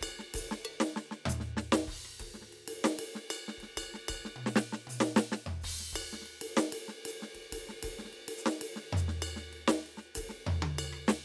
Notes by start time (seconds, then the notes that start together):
0.01 kick, hi-hat pedal, ride bell
0.19 snare
0.34 kick, hi-hat pedal, ride
0.51 snare
0.65 percussion
0.80 snare
0.96 snare
1.11 snare
1.26 kick, hi-hat pedal, floor tom
1.40 snare
1.57 snare
1.72 snare
1.88 kick, crash
1.94 kick
2.05 cross-stick
2.20 kick, snare, ride, floor tom
2.34 snare
2.42 snare
2.49 snare
2.53 ride
2.68 ride
2.84 snare, hi-hat pedal
2.99 ride
3.15 snare
3.31 hi-hat pedal, ride bell
3.48 snare
3.58 kick, ride
3.63 snare
3.77 kick, hi-hat pedal, ride bell
3.94 snare
4.09 kick, ride bell
4.16 kick
4.25 snare
4.36 mid tom
4.46 snare
4.52 snare, hi-hat pedal
4.73 snare
4.87 hi-hat pedal, mid tom
5.00 snare
5.16 snare
5.32 snare
5.46 floor tom
5.62 kick, hi-hat pedal, crash
5.80 snare
5.93 kick, ride bell
6.13 snare
6.22 snare
6.26 ride
6.42 ride
6.57 snare, hi-hat pedal
6.73 ride
6.88 snare
7.05 hi-hat pedal, ride
7.22 snare
7.35 kick, snare, ride
7.52 kick, hi-hat pedal, ride
7.69 snare
7.83 kick, ride
7.90 kick
7.99 snare
8.05 snare
8.10 snare, ride
8.28 ride
8.38 hi-hat pedal
8.46 snare
8.61 ride
8.76 snare
8.93 floor tom
8.97 hi-hat pedal
9.08 snare
9.22 ride bell
9.36 snare
9.53 ride
9.68 snare
9.86 hi-hat pedal, ride
9.97 snare
10.15 kick, hi-hat pedal, ride
10.23 kick
10.29 snare
10.47 floor tom
10.62 high tom
10.79 ride bell
10.93 cross-stick
11.07 snare, hi-hat pedal